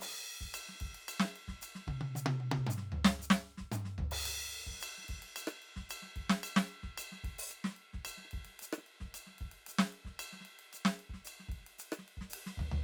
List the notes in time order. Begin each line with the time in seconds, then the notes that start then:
0.01 hi-hat pedal, crash
0.41 kick, snare
0.54 hi-hat pedal, ride bell
0.69 snare
0.75 cross-stick
0.80 kick, ride
0.87 kick, snare
0.95 ride
1.08 hi-hat pedal, ride bell
1.20 snare
1.24 cross-stick
1.36 ride
1.48 kick, snare
1.61 hi-hat pedal, ride bell
1.75 snare
1.87 kick, high tom
2.01 high tom
2.15 hi-hat pedal, high tom
2.26 high tom
2.40 high tom
2.51 high tom
2.57 kick
2.67 hi-hat pedal, mid tom
2.77 snare
2.92 floor tom
3.04 snare
3.19 snare, hi-hat pedal
3.30 snare
3.57 kick, snare
3.72 hi-hat pedal, mid tom
3.85 snare
3.98 kick, floor tom
4.05 kick
4.11 crash
4.25 hi-hat pedal, ride
4.52 ride
4.66 kick
4.73 snare
4.80 hi-hat pedal, ride bell
4.98 snare
5.04 cross-stick
5.08 kick, ride
5.15 kick, snare
5.22 snare, ride
5.36 hi-hat pedal, ride bell
5.47 cross-stick
5.62 ride
5.76 kick, snare
5.89 hi-hat pedal, ride bell
6.02 snare
6.16 kick, ride
6.29 snare
6.43 hi-hat pedal, ride bell
6.56 snare
6.69 ride
6.83 kick, snare
6.98 hi-hat pedal, ride bell
7.12 snare
7.24 kick, ride
7.30 kick
7.38 open hi-hat
7.49 hi-hat pedal, ride bell
7.64 snare
7.76 ride
7.93 kick, snare
8.05 hi-hat pedal, ride bell
8.17 snare
8.25 cross-stick
8.31 kick, ride
8.39 kick
8.45 snare, ride
8.49 snare
8.59 hi-hat pedal, ride
8.73 cross-stick
8.78 cross-stick
8.86 ride
9.00 kick, snare
9.06 kick
9.14 hi-hat pedal, ride bell
9.27 snare
9.35 snare, ride
9.41 kick
9.45 snare
9.50 snare, ride
9.66 hi-hat pedal, ride
9.78 snare
9.92 ride
10.05 kick, snare
10.19 hi-hat pedal, ride bell
10.32 snare
10.41 snare
10.45 ride
10.59 ride
10.73 hi-hat pedal, ride bell
10.85 snare
10.99 ride
11.09 kick
11.14 snare
11.25 hi-hat pedal, ride bell
11.40 snare
11.47 kick, cross-stick
11.52 kick, ride
11.62 snare
11.66 snare, ride
11.78 hi-hat pedal, ride
11.92 cross-stick
11.99 snare
12.08 ride
12.17 kick
12.21 snare
12.30 hi-hat pedal, ride
12.46 snare
12.57 kick, floor tom
12.63 kick
12.71 floor tom